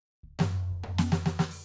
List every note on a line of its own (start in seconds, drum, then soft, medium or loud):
0.24 kick soft
0.40 snare loud
0.40 floor tom loud
0.72 kick soft
0.84 floor tom loud
0.99 snare loud
1.13 snare loud
1.27 snare loud
1.40 snare loud
1.52 open hi-hat medium